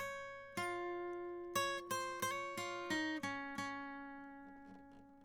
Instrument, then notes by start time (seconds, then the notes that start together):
acoustic guitar
0.00 C#5
0.57 F4
1.56 C#5
1.91 C5
2.23 C5
2.35 C#5
2.58 F4
2.91 D#4
3.24 C#4
3.59 C#4